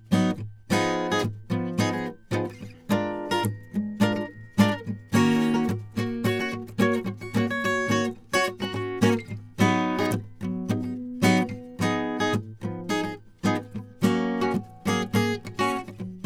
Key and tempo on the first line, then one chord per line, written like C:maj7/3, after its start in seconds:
D# minor, 108 BPM
0.00 B:maj/5
0.69 F:hdim7
2.91 A#:7/b7
5.14 D#:min7
9.58 G#:min7(7,*1)/b7
11.80 C#:9(*1)/3
14.03 F#:maj